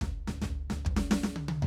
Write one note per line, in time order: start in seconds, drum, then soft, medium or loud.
0.01 kick medium
0.01 snare medium
0.01 floor tom medium
0.27 snare medium
0.27 floor tom medium
0.41 kick medium
0.41 snare medium
0.41 floor tom medium
0.70 snare medium
0.70 floor tom medium
0.85 kick medium
0.85 floor tom medium
0.96 snare medium
1.11 snare loud
1.23 snare medium
1.36 high tom loud
1.48 high tom loud
1.62 floor tom loud